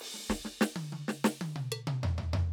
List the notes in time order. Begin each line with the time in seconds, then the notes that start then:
0.00 ride
0.14 snare
0.18 snare
0.22 snare
0.25 snare
0.29 kick, snare
0.45 snare
0.61 snare
0.76 high tom
0.92 high tom
1.08 snare
1.24 snare
1.41 open hi-hat, high tom
1.56 mid tom
1.72 percussion
1.87 mid tom
2.03 floor tom
2.18 floor tom
2.33 floor tom